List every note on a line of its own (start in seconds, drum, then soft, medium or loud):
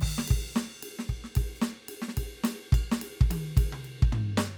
0.01 kick medium
0.01 crash loud
0.18 snare loud
0.28 kick loud
0.28 ride loud
0.52 hi-hat pedal medium
0.56 snare loud
0.83 ride loud
0.99 snare medium
1.09 kick medium
1.09 ride soft
1.24 snare medium
1.36 kick loud
1.36 ride loud
1.56 hi-hat pedal medium
1.62 snare loud
1.89 ride loud
2.02 snare medium
2.09 snare medium
2.17 kick medium
2.17 ride loud
2.44 snare loud
2.44 ride loud
2.73 kick loud
2.73 ride bell loud
2.92 snare loud
3.02 ride loud
3.21 kick loud
3.31 high tom loud
3.31 ride loud
3.57 kick loud
3.57 ride loud
3.73 mid tom medium
3.85 ride medium
4.03 kick loud
4.13 floor tom loud
4.38 snare loud